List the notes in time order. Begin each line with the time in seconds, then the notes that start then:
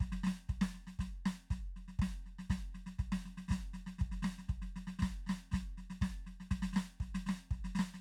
0.01 kick, snare
0.13 snare
0.24 snare
0.28 snare
0.49 kick, snare
0.62 snare
0.75 snare
0.88 snare
1.00 kick, snare
1.26 snare
1.51 kick, snare
1.77 snare
1.89 snare
2.00 kick, snare
2.27 snare
2.39 snare
2.51 kick, snare
2.75 snare
2.87 snare
2.99 kick, snare
3.13 snare
3.26 snare
3.38 snare
3.49 kick, snare
3.52 snare
3.74 snare
3.87 snare
3.99 kick, snare
4.12 snare
4.23 snare
4.25 snare
4.39 snare
4.49 kick, snare
4.62 snare
4.77 snare
4.88 snare
5.00 kick, snare
5.03 snare
5.27 snare
5.30 snare
5.52 kick, snare
5.55 snare
5.78 snare
5.91 snare
6.02 kick, snare
6.27 snare
6.41 snare
6.52 kick, snare
6.63 snare
6.74 snare
6.77 snare
7.01 kick, snare
7.15 snare
7.27 snare
7.30 snare
7.51 kick, snare
7.65 snare
7.76 snare
7.80 snare
7.95 snare